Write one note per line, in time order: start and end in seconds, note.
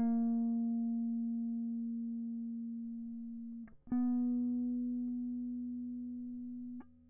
0.00 3.74 A#3
3.93 6.85 B3